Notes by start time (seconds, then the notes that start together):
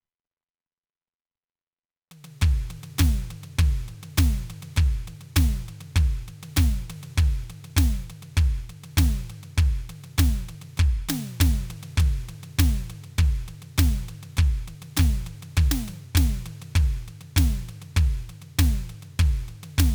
2.11 mid tom
2.24 mid tom
2.41 kick, mid tom
2.70 mid tom
2.83 mid tom
2.98 kick, snare, mid tom
3.30 mid tom
3.43 mid tom
3.58 kick, mid tom
3.88 mid tom
4.03 mid tom
4.17 kick, snare, mid tom
4.50 mid tom
4.62 mid tom
4.76 kick, mid tom
5.07 mid tom
5.21 mid tom
5.36 kick, snare, mid tom
5.68 mid tom
5.80 mid tom
5.96 kick, mid tom
6.28 mid tom
6.43 mid tom
6.56 kick, snare, mid tom
6.90 mid tom
7.03 mid tom
7.17 kick, mid tom
7.50 mid tom
7.64 mid tom
7.76 kick, snare, mid tom
8.10 mid tom
8.22 mid tom
8.37 kick, mid tom
8.69 mid tom
8.83 mid tom
8.97 kick, snare, mid tom
9.29 mid tom
9.43 mid tom
9.58 kick, mid tom
9.89 mid tom
10.04 mid tom
10.18 kick, snare, mid tom
10.48 mid tom
10.61 mid tom
10.77 kick, mid tom
11.09 snare, mid tom
11.40 kick, snare, mid tom
11.70 mid tom
11.83 mid tom
11.97 kick, mid tom
12.28 mid tom
12.43 mid tom
12.59 kick, snare, mid tom
12.89 mid tom
13.04 mid tom
13.18 kick, mid tom
13.48 mid tom
13.62 mid tom
13.78 kick, snare, mid tom
14.08 mid tom
14.23 mid tom
14.37 kick, mid tom
14.67 mid tom
14.82 mid tom
14.96 kick, snare, mid tom
15.26 mid tom
15.42 mid tom
15.57 kick, mid tom
15.71 snare
15.88 mid tom
16.15 kick, snare, mid tom
16.46 mid tom
16.62 mid tom
16.75 kick, mid tom
17.08 mid tom
17.21 mid tom
17.36 kick, snare, mid tom
17.68 mid tom
17.82 mid tom
17.96 kick, mid tom
18.29 mid tom
18.41 mid tom
18.59 kick, snare, mid tom
18.89 mid tom
19.02 mid tom
19.19 kick, mid tom
19.48 mid tom
19.63 mid tom
19.78 kick, snare, mid tom